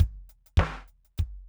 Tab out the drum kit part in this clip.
HH |x-xx--xxx-------|
SD |----o-----------|
BD |o---o---o-------|